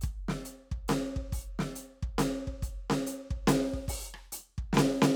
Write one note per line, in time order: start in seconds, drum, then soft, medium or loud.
0.01 closed hi-hat medium
0.01 kick medium
0.28 snare medium
0.45 closed hi-hat medium
0.71 kick medium
0.81 kick soft
0.88 closed hi-hat medium
0.88 snare loud
1.16 kick medium
1.24 snare soft
1.32 open hi-hat medium
1.32 kick medium
1.59 snare medium
1.76 closed hi-hat medium
2.03 kick medium
2.18 closed hi-hat loud
2.18 snare loud
2.47 kick medium
2.62 closed hi-hat medium
2.62 kick medium
2.90 snare loud
3.07 closed hi-hat loud
3.31 kick medium
3.47 closed hi-hat loud
3.47 snare loud
3.73 kick medium
3.88 open hi-hat loud
3.88 kick medium
4.14 cross-stick medium
4.32 closed hi-hat loud
4.58 kick medium
4.73 snare loud
4.73 hi-hat pedal soft
4.77 snare loud
5.02 snare loud